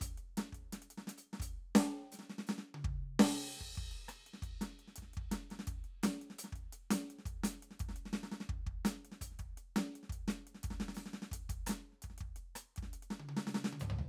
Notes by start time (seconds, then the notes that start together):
0.01 closed hi-hat, kick
0.18 closed hi-hat
0.37 snare, closed hi-hat
0.52 kick, closed hi-hat
0.73 snare, closed hi-hat
0.82 closed hi-hat
0.90 closed hi-hat
0.98 snare
1.07 snare, closed hi-hat
1.18 closed hi-hat
1.33 snare
1.40 open hi-hat, kick
1.75 open hi-hat, snare
2.12 snare, hi-hat pedal
2.19 snare
2.30 snare
2.38 snare
2.47 snare, hi-hat pedal
2.58 snare
2.74 high tom
2.84 kick
3.19 snare, crash
3.59 kick, closed hi-hat
3.64 snare
3.75 kick, closed hi-hat
3.91 closed hi-hat
4.08 cross-stick, closed hi-hat
4.26 closed hi-hat
4.34 snare
4.42 kick, closed hi-hat
4.61 snare, closed hi-hat
4.79 closed hi-hat
4.88 snare
4.96 kick, closed hi-hat
5.02 snare
5.14 kick, closed hi-hat
5.32 snare, closed hi-hat
5.51 snare, closed hi-hat
5.59 snare
5.67 kick, closed hi-hat
5.84 closed hi-hat
6.03 closed hi-hat, snare
6.22 closed hi-hat
6.30 snare
6.39 closed hi-hat
6.44 snare
6.52 kick, closed hi-hat
6.73 closed hi-hat
6.91 closed hi-hat, snare
7.10 closed hi-hat
7.19 snare
7.26 kick, closed hi-hat
7.44 closed hi-hat, snare
7.63 closed hi-hat
7.71 snare
7.80 kick, closed hi-hat
7.89 snare
7.96 closed hi-hat
8.06 snare
8.13 snare
8.23 snare
8.32 snare
8.40 snare
8.49 kick
8.67 kick
8.85 closed hi-hat, snare
9.05 closed hi-hat
9.12 snare
9.21 closed hi-hat, kick
9.31 snare
9.39 kick, closed hi-hat
9.57 closed hi-hat
9.76 snare, closed hi-hat
9.96 closed hi-hat
10.03 snare
10.10 kick, closed hi-hat
10.28 snare, closed hi-hat
10.47 closed hi-hat
10.55 snare
10.63 kick, closed hi-hat
10.71 snare
10.80 snare
10.88 snare
10.95 snare, hi-hat pedal
11.06 snare
11.13 snare
11.22 snare
11.32 kick, closed hi-hat
11.49 kick, closed hi-hat
11.67 open hi-hat, cross-stick, snare
11.92 snare
12.02 kick, open hi-hat
12.10 snare
12.18 kick, open hi-hat
12.36 open hi-hat
12.55 open hi-hat, cross-stick
12.76 kick, open hi-hat
12.83 snare
12.93 open hi-hat
13.03 open hi-hat
13.10 snare
13.20 high tom
13.29 high tom
13.37 snare
13.47 snare, hi-hat pedal
13.54 snare
13.64 snare
13.73 high tom
13.80 hi-hat pedal, floor tom
13.90 floor tom
13.99 floor tom